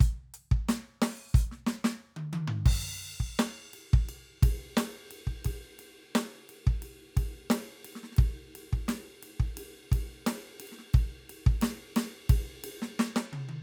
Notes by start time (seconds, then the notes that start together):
0.01 closed hi-hat, kick
0.34 closed hi-hat
0.52 kick
0.69 open hi-hat, snare
1.02 open hi-hat, snare
1.35 open hi-hat, kick
1.52 snare
1.67 snare
1.85 snare
2.17 high tom
2.33 high tom
2.48 floor tom
2.66 kick, crash
3.20 kick
3.39 snare, ride bell
3.74 ride
3.94 kick
4.09 ride bell
4.43 kick, ride
4.77 snare, ride
5.11 ride
5.27 kick
5.45 kick, ride
5.80 ride
6.16 snare, hi-hat pedal, ride
6.50 ride
6.67 kick, snare
6.83 ride
7.17 kick, ride
7.51 snare, ride
7.85 ride
7.93 snare, ride
8.04 snare
8.12 snare
8.17 kick, ride
8.56 ride
8.73 kick
8.89 snare, ride
9.23 ride
9.40 kick
9.58 ride
9.92 kick, ride
10.27 snare, ride
10.60 ride
10.68 ride
10.72 snare
10.79 snare
10.87 snare
10.94 kick, ride
11.30 ride
11.47 kick
11.62 snare, ride
11.97 snare, ride
12.30 kick, ride
12.64 ride
12.82 snare
13.00 snare
13.16 snare
13.33 mid tom
13.49 high tom